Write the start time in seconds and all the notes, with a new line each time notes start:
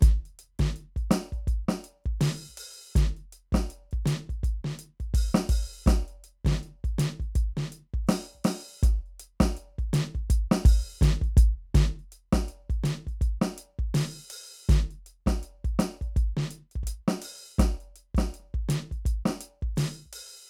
0.01 closed hi-hat, kick, snare, hi-hat pedal
0.26 closed hi-hat
0.39 closed hi-hat
0.59 kick, snare, closed hi-hat
0.76 closed hi-hat
0.96 kick, closed hi-hat
1.11 closed hi-hat, snare
1.32 kick, closed hi-hat
1.48 closed hi-hat, kick
1.69 snare, closed hi-hat
1.84 closed hi-hat
2.04 kick, closed hi-hat
2.21 open hi-hat, snare
2.49 kick
2.58 open hi-hat
2.96 closed hi-hat, kick, snare, hi-hat pedal
3.17 closed hi-hat
3.33 closed hi-hat
3.53 kick, snare, closed hi-hat
3.70 closed hi-hat
3.91 kick, closed hi-hat
4.06 closed hi-hat, snare
4.30 kick, closed hi-hat
4.44 closed hi-hat, kick
4.65 snare
4.79 closed hi-hat
5.00 kick, closed hi-hat
5.14 open hi-hat, kick
5.35 snare
5.49 open hi-hat, kick
5.87 open hi-hat, kick, snare, hi-hat pedal
6.08 closed hi-hat
6.24 closed hi-hat
6.45 kick, snare, closed hi-hat
6.52 snare
6.63 closed hi-hat
6.84 kick, closed hi-hat
6.99 closed hi-hat, snare
7.20 kick, closed hi-hat
7.36 closed hi-hat, kick
7.57 snare, closed hi-hat
7.72 closed hi-hat
7.94 kick
8.07 open hi-hat, snare, hi-hat pedal
8.35 kick
8.45 open hi-hat, snare
8.65 open hi-hat
8.82 closed hi-hat, kick, snare, hi-hat pedal
9.06 closed hi-hat
9.20 closed hi-hat
9.40 kick, snare, closed hi-hat
9.57 closed hi-hat
9.79 kick, closed hi-hat
9.94 closed hi-hat, snare
10.15 kick, closed hi-hat
10.30 closed hi-hat, kick
10.52 snare
10.65 open hi-hat, kick
11.01 closed hi-hat, kick, snare, hi-hat pedal
11.22 kick, closed hi-hat
11.31 kick
11.37 closed hi-hat, kick
11.75 open hi-hat, kick, snare, hi-hat pedal
11.99 closed hi-hat
12.12 closed hi-hat
12.33 kick, snare, closed hi-hat
12.49 closed hi-hat
12.70 kick, closed hi-hat
12.84 closed hi-hat, snare
13.07 kick, closed hi-hat
13.21 closed hi-hat, kick
13.42 snare, closed hi-hat
13.58 closed hi-hat
13.79 kick
13.95 open hi-hat, snare
14.30 open hi-hat
14.69 open hi-hat, kick, snare, hi-hat pedal
14.91 closed hi-hat
15.07 closed hi-hat
15.27 kick, snare, closed hi-hat
15.43 closed hi-hat
15.65 kick, closed hi-hat
15.79 closed hi-hat, snare
16.02 kick, closed hi-hat
16.17 closed hi-hat, kick
16.37 snare
16.51 closed hi-hat
16.72 closed hi-hat
16.76 kick
16.84 closed hi-hat, kick
17.08 snare
17.22 open hi-hat
17.59 closed hi-hat, kick, snare, hi-hat pedal
17.81 closed hi-hat
17.96 closed hi-hat
18.15 kick, snare, closed hi-hat
18.34 closed hi-hat
18.40 snare
18.54 kick
18.69 closed hi-hat, snare
18.92 kick, closed hi-hat
19.06 closed hi-hat, kick
19.26 snare
19.29 snare
19.41 closed hi-hat
19.62 kick, closed hi-hat
19.76 open hi-hat, snare, hi-hat pedal
20.06 kick
20.13 open hi-hat